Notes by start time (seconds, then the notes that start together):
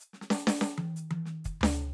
0.00 hi-hat pedal
0.13 snare
0.21 snare
0.30 snare
0.47 snare, hi-hat pedal
0.61 snare
0.78 high tom
0.96 hi-hat pedal
1.11 high tom
1.25 snare
1.44 kick, hi-hat pedal
1.61 snare, floor tom